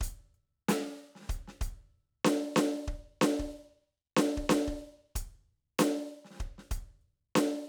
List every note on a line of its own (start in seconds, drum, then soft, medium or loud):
0.01 closed hi-hat medium
0.01 kick medium
0.35 closed hi-hat soft
0.69 closed hi-hat loud
0.69 snare loud
1.16 snare soft
1.19 snare soft
1.22 snare soft
1.24 snare soft
1.26 kick medium
1.26 snare soft
1.31 closed hi-hat medium
1.48 snare soft
1.61 closed hi-hat medium
1.61 kick medium
2.25 snare loud
2.56 snare loud
2.88 kick medium
3.22 snare loud
3.40 kick soft
4.17 snare loud
4.38 kick medium
4.50 snare loud
4.68 kick medium
5.16 kick medium
5.16 closed hi-hat loud
5.79 closed hi-hat loud
5.79 snare loud
6.25 snare soft
6.31 snare soft
6.34 snare soft
6.37 kick medium
6.37 snare soft
6.41 closed hi-hat soft
6.58 snare soft
6.71 closed hi-hat medium
6.71 kick medium
7.02 closed hi-hat soft
7.36 closed hi-hat medium
7.36 snare loud